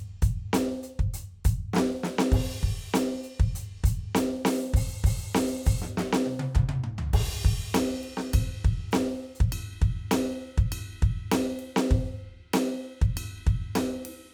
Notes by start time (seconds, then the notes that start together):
0.22 closed hi-hat, kick
0.53 closed hi-hat, snare
0.83 closed hi-hat
0.99 kick
1.14 closed hi-hat
1.45 closed hi-hat, kick
1.73 snare
1.76 snare
2.03 snare
2.18 snare
2.32 kick, crash
2.63 kick
2.94 closed hi-hat, snare
3.23 closed hi-hat
3.40 kick
3.55 closed hi-hat
3.84 closed hi-hat, kick
4.15 closed hi-hat, snare
4.45 open hi-hat, snare
4.74 open hi-hat, kick
5.04 open hi-hat, kick
5.35 open hi-hat, snare
5.66 open hi-hat, kick
5.82 snare, hi-hat pedal
5.97 snare
6.13 snare
6.26 high tom
6.39 high tom
6.55 kick, high tom
6.69 high tom
6.84 mid tom
6.98 floor tom
7.13 kick, crash
7.45 kick
7.74 snare, ride bell
8.03 ride
8.17 snare
8.33 kick, ride bell
8.64 kick
8.91 snare, hi-hat pedal, ride
9.35 closed hi-hat
9.40 kick
9.52 ride bell
9.81 kick
10.11 snare, ride bell
10.58 kick
10.72 ride bell
11.02 kick, snare
11.31 snare, ride bell
11.59 ride
11.76 snare
11.91 kick
12.53 snare, ride bell
13.01 kick
13.17 ride bell
13.46 kick
13.75 snare, ride bell
14.05 ride